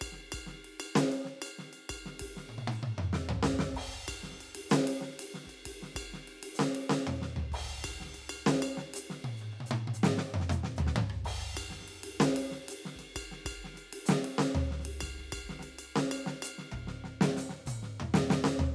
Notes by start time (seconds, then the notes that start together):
0.01 kick, ride bell
0.12 snare
0.18 snare
0.32 kick, ride bell
0.46 snare
0.53 snare
0.64 ride
0.80 ride bell
0.95 snare, hi-hat pedal
1.11 ride bell
1.24 snare
1.42 hi-hat pedal, ride bell
1.58 snare
1.67 snare
1.73 snare, ride bell
1.89 kick, ride bell
2.05 snare
2.19 kick, ride
2.36 snare
2.49 high tom
2.58 high tom
2.67 hi-hat pedal, high tom
2.83 high tom
2.98 mid tom
3.13 snare
3.29 floor tom
3.42 snare
3.59 snare
3.72 kick, hi-hat pedal, crash
3.80 kick
3.85 kick
3.93 cross-stick
4.08 kick, ride bell
4.23 snare
4.31 snare
4.40 ride bell
4.55 ride
4.69 snare, hi-hat pedal
4.79 snare
4.87 ride
5.01 snare
5.09 snare
5.19 hi-hat pedal, ride
5.34 snare
5.44 kick, snare
5.49 ride bell
5.65 kick, hi-hat pedal, ride
5.82 snare
5.95 kick, ride bell
6.13 snare
6.27 ride
6.43 ride
6.54 hi-hat pedal
6.59 snare
6.75 ride
6.89 snare
7.07 mid tom
7.21 snare
7.36 floor tom
7.51 kick, hi-hat pedal, crash
7.70 snare
7.84 kick, ride bell
7.90 kick
8.00 snare
8.05 snare
8.10 snare
8.14 ride bell
8.29 ride bell
8.46 snare
8.54 snare
8.62 ride bell
8.77 snare
8.93 hi-hat pedal, ride
9.10 snare
9.24 high tom
9.37 hi-hat pedal
9.41 high tom
9.52 high tom, crash
9.60 open hi-hat, high tom
9.66 hi-hat pedal
9.71 high tom
9.87 high tom
9.94 hi-hat pedal
10.03 snare
10.17 snare
10.34 mid tom
10.40 snare
10.49 hi-hat pedal, mid tom
10.63 snare
10.76 floor tom, hi-hat pedal
10.86 snare
10.96 floor tom
11.05 hi-hat pedal
11.09 cross-stick
11.24 kick, hi-hat pedal, crash
11.40 cross-stick
11.54 kick, ride bell
11.70 snare
11.80 snare
11.88 ride
12.03 ride
12.20 snare
12.36 ride
12.51 snare
12.68 hi-hat pedal, ride
12.85 snare
12.95 kick, snare, ride bell
13.14 kick, hi-hat pedal, ride bell
13.31 snare
13.45 kick, ride bell
13.51 kick
13.64 snare
13.74 snare, ride bell
13.92 ride
14.05 snare, hi-hat pedal
14.24 ride
14.38 snare
14.54 floor tom
14.71 snare
14.79 snare, hi-hat pedal
14.85 ride
15.00 kick, snare, ride bell
15.17 snare
15.32 kick, ride bell
15.38 kick
15.49 snare
15.59 snare, ride bell
15.78 ride bell
15.95 snare
16.11 ride bell
16.26 snare
16.42 hi-hat pedal, ride bell
16.58 snare
16.71 kick, mid tom
16.79 kick
16.82 kick
16.87 snare
17.04 snare
17.21 snare
17.36 snare, hi-hat pedal
17.49 snare
17.65 kick, hi-hat pedal, open hi-hat, high tom
17.82 snare
18.00 mid tom
18.14 snare
18.30 snare
18.44 snare
18.59 floor tom